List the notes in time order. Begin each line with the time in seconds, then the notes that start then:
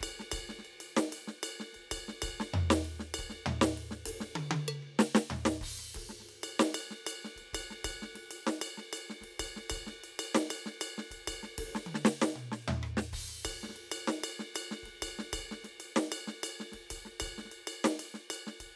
0.01 kick, hi-hat pedal, ride bell
0.20 snare
0.32 kick, ride bell
0.40 kick
0.50 snare
0.59 snare
0.65 ride bell
0.81 ride bell
0.97 snare
1.13 ride bell
1.28 snare
1.44 hi-hat pedal, ride bell
1.60 snare
1.73 kick, snare, ride bell
1.79 snare
1.92 kick, hi-hat pedal, ride bell
2.09 snare
2.22 kick, ride bell
2.30 kick
2.41 snare
2.54 floor tom
2.71 snare
2.85 ride
3.00 snare
3.15 ride bell
3.19 kick
3.30 snare
3.46 floor tom
3.62 snare
3.72 hi-hat pedal
3.78 ride
3.91 snare
4.06 kick, hi-hat pedal, ride
4.21 snare
4.36 high tom
4.51 high tom
4.69 percussion
4.83 cross-stick
5.00 snare
5.04 hi-hat pedal
5.15 snare
5.31 floor tom
5.46 snare
5.59 kick, hi-hat pedal
5.63 crash
5.68 kick
5.79 cross-stick
5.95 kick, ride, floor tom
6.03 kick
6.10 snare
6.21 snare
6.29 ride bell
6.44 ride bell
6.60 snare
6.75 ride bell
6.91 snare
7.07 hi-hat pedal, ride bell
7.25 snare
7.37 kick, ride bell
7.41 snare
7.54 kick, ride bell
7.59 kick
7.71 snare
7.85 kick, ride bell
7.91 kick
8.03 snare
8.15 snare, ride
8.31 ride bell
8.47 snare
8.62 ride bell
8.78 snare
8.93 hi-hat pedal, ride bell
9.10 snare
9.21 kick, snare, ride
9.40 kick, ride bell
9.57 snare
9.70 kick, ride bell
9.78 kick
9.87 snare
10.04 ride bell
10.20 ride bell
10.35 snare
10.51 ride bell
10.66 snare
10.81 hi-hat pedal, ride bell
10.98 snare
11.11 kick, ride bell
11.28 kick, ride bell
11.43 snare
11.59 kick, ride
11.65 kick
11.75 snare
11.87 high tom
11.95 snare
12.05 snare
12.22 snare
12.36 mid tom
12.52 snare
12.61 hi-hat pedal
12.68 floor tom
12.83 cross-stick
12.97 snare
13.13 kick, hi-hat pedal, crash
13.24 kick
13.29 cross-stick
13.45 kick, ride bell
13.64 snare
13.69 snare
13.75 snare, ride
13.92 ride bell
14.08 snare
14.24 ride bell
14.40 snare
14.55 hi-hat pedal, ride bell
14.72 snare
14.83 kick, snare, ride
15.03 kick, ride bell
15.19 snare
15.33 kick, ride bell
15.39 kick
15.52 snare
15.64 snare, ride bell
15.80 ride bell
15.97 snare
16.12 ride bell
16.28 snare
16.44 hi-hat pedal, ride bell
16.60 snare
16.72 kick, snare, ride
16.91 kick, ride bell
17.06 snare
17.21 kick, ride bell
17.28 kick
17.38 snare
17.46 snare
17.52 ride bell
17.68 ride bell
17.85 snare
18.00 ride bell
18.15 snare
18.31 hi-hat pedal, ride bell
18.47 snare
18.61 kick, ride bell